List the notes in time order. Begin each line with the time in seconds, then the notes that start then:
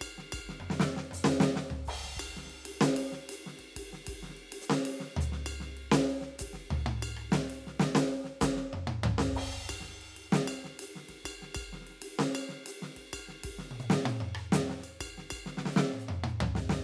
0.01 kick, hi-hat pedal, ride bell
0.18 snare
0.32 kick, ride bell
0.40 kick
0.49 snare
0.60 mid tom
0.70 snare
0.76 snare, hi-hat pedal
0.97 snare
1.11 hi-hat pedal, mid tom
1.24 snare
1.40 snare
1.56 snare
1.70 floor tom
1.85 kick, hi-hat pedal, crash
2.04 snare
2.17 kick, ride bell
2.37 snare
2.45 snare
2.50 ride
2.65 ride
2.81 snare, hi-hat pedal
2.96 ride
3.12 snare
3.29 hi-hat pedal, ride
3.46 snare
3.59 kick, snare, ride
3.76 kick, hi-hat pedal, ride
3.93 snare
4.07 kick, ride
4.14 kick
4.23 snare
4.29 snare
4.34 snare, ride
4.52 ride
4.62 hi-hat pedal
4.70 snare
4.85 ride
5.00 snare
5.17 floor tom
5.21 hi-hat pedal
5.32 snare
5.46 ride bell
5.60 snare
5.77 ride
5.92 snare
6.10 hi-hat pedal, ride
6.21 snare
6.39 kick, hi-hat pedal, ride
6.47 kick
6.53 snare
6.71 floor tom
6.86 high tom
7.03 ride bell
7.17 cross-stick
7.31 snare, hi-hat pedal
7.50 hi-hat pedal, ride
7.67 snare
7.80 snare
7.95 snare
8.08 ride
8.24 snare
8.41 kick, snare, hi-hat pedal
8.48 kick
8.57 snare
8.73 mid tom
8.87 high tom
9.04 floor tom
9.18 snare
9.33 kick, hi-hat pedal, crash
9.42 kick
9.52 cross-stick
9.69 kick, ride bell
9.80 snare
9.89 snare
10.01 ride
10.17 ride
10.32 snare, hi-hat pedal
10.48 ride bell
10.64 snare
10.79 hi-hat pedal, ride
10.96 snare
11.08 kick, snare, ride
11.25 kick, hi-hat pedal, ride bell
11.42 snare
11.55 kick, ride bell
11.62 kick
11.73 snare
11.81 snare
11.87 snare, ride
12.02 ride
12.12 hi-hat pedal
12.19 snare
12.35 ride bell
12.49 snare
12.66 hi-hat pedal, ride
12.82 snare
12.96 kick, snare, ride
13.13 kick, ride bell
13.28 snare
13.44 kick, ride
13.50 kick
13.58 snare
13.71 high tom
13.79 hi-hat pedal, high tom
13.90 snare
14.06 hi-hat pedal, high tom
14.20 mid tom
14.35 cross-stick
14.52 snare, hi-hat pedal
14.70 snare
14.79 snare
14.84 ride bell
14.89 snare
15.00 kick, ride bell
15.18 snare
15.30 kick, ride bell
15.46 snare
15.57 snare
15.66 snare
15.71 hi-hat pedal
15.76 snare
15.94 high tom
16.00 hi-hat pedal
16.09 mid tom
16.24 high tom
16.28 hi-hat pedal
16.41 floor tom
16.55 snare
16.70 snare